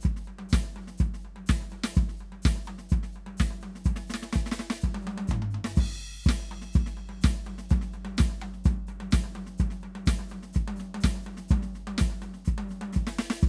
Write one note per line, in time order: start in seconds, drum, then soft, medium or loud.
0.01 hi-hat pedal medium
0.01 high tom medium
0.05 kick loud
0.17 snare soft
0.24 hi-hat pedal soft
0.24 high tom medium
0.39 high tom medium
0.49 kick loud
0.49 snare loud
0.49 hi-hat pedal medium
0.64 high tom medium
0.72 hi-hat pedal soft
0.76 high tom medium
0.88 snare soft
0.98 kick loud
0.98 hi-hat pedal medium
0.98 high tom medium
1.14 snare soft
1.21 hi-hat pedal soft
1.25 high tom soft
1.36 high tom medium
1.47 kick loud
1.47 snare loud
1.47 hi-hat pedal medium
1.61 high tom medium
1.70 hi-hat pedal soft
1.70 high tom medium
1.84 snare loud
1.94 kick loud
1.94 hi-hat pedal medium
1.94 high tom medium
2.09 snare soft
2.17 hi-hat pedal soft
2.17 high tom medium
2.32 high tom medium
2.42 kick loud
2.42 snare loud
2.42 hi-hat pedal medium
2.56 high tom medium
2.65 hi-hat pedal medium
2.65 high tom medium
2.79 snare soft
2.89 kick loud
2.89 hi-hat pedal medium
2.89 high tom medium
3.03 snare soft
3.12 hi-hat pedal soft
3.16 high tom medium
3.27 high tom medium
3.37 kick loud
3.37 snare loud
3.37 hi-hat pedal medium
3.51 high tom medium
3.61 hi-hat pedal soft
3.61 high tom medium
3.76 snare soft
3.85 kick loud
3.85 hi-hat pedal medium
3.85 high tom medium
3.96 snare medium
4.07 snare medium
4.07 hi-hat pedal medium
4.14 snare loud
4.23 snare medium
4.32 kick loud
4.32 snare loud
4.32 hi-hat pedal medium
4.46 snare medium
4.52 snare loud
4.56 snare medium
4.56 hi-hat pedal soft
4.70 snare loud
4.81 kick medium
4.81 hi-hat pedal medium
4.81 high tom medium
4.95 high tom loud
5.02 hi-hat pedal soft
5.07 high tom loud
5.18 high tom loud
5.28 kick medium
5.28 floor tom loud
5.28 hi-hat pedal medium
5.42 floor tom loud
5.51 floor tom loud
5.51 hi-hat pedal soft
5.65 snare loud
5.75 kick loud
5.75 hi-hat pedal medium
5.75 crash loud
5.98 hi-hat pedal soft
6.24 kick loud
6.24 hi-hat pedal medium
6.29 snare loud
6.40 high tom medium
6.48 hi-hat pedal soft
6.48 high tom medium
6.62 snare soft
6.73 kick loud
6.73 hi-hat pedal medium
6.73 high tom medium
6.86 snare medium
6.96 hi-hat pedal soft
6.96 high tom medium
7.09 high tom medium
7.22 kick loud
7.22 snare loud
7.22 hi-hat pedal medium
7.36 high tom medium
7.45 hi-hat pedal soft
7.45 high tom medium
7.58 snare medium
7.70 kick loud
7.70 hi-hat pedal medium
7.70 high tom loud
7.82 snare soft
7.92 hi-hat pedal soft
7.92 high tom medium
8.05 high tom loud
8.18 kick loud
8.18 snare loud
8.18 hi-hat pedal medium
8.30 high tom medium
8.40 hi-hat pedal soft
8.40 high tom medium
8.54 snare soft
8.64 kick loud
8.64 hi-hat pedal medium
8.64 high tom medium
8.87 hi-hat pedal soft
8.87 high tom medium
9.01 high tom loud
9.11 kick loud
9.11 snare loud
9.11 hi-hat pedal medium
9.24 high tom medium
9.34 hi-hat pedal soft
9.34 high tom loud
9.47 snare soft
9.58 kick loud
9.58 hi-hat pedal medium
9.58 high tom loud
9.71 snare soft
9.81 hi-hat pedal soft
9.81 high tom medium
9.96 high tom loud
10.06 kick loud
10.06 snare loud
10.06 hi-hat pedal medium
10.19 high tom medium
10.29 hi-hat pedal medium
10.29 high tom medium
10.43 snare soft
10.53 kick loud
10.53 snare soft
10.53 hi-hat pedal medium
10.68 high tom loud
10.76 snare soft
10.76 hi-hat pedal medium
10.95 high tom loud
11.01 kick loud
11.01 snare loud
11.01 hi-hat pedal medium
11.16 high tom medium
11.23 hi-hat pedal soft
11.23 high tom medium
11.37 snare medium
11.48 kick loud
11.48 hi-hat pedal medium
11.48 high tom loud
11.63 snare soft
11.73 snare soft
11.73 hi-hat pedal soft
11.87 high tom loud
11.98 kick loud
11.98 snare loud
11.98 hi-hat pedal medium
12.10 high tom medium
12.21 hi-hat pedal medium
12.21 high tom medium
12.34 snare soft
12.45 kick loud
12.45 snare soft
12.45 hi-hat pedal medium
12.58 high tom loud
12.69 snare soft
12.69 hi-hat pedal soft
12.81 high tom loud
12.93 kick medium
12.93 snare medium
12.93 hi-hat pedal medium
13.07 snare loud
13.16 snare loud
13.16 hi-hat pedal soft
13.30 snare loud
13.41 kick loud
13.41 hi-hat pedal medium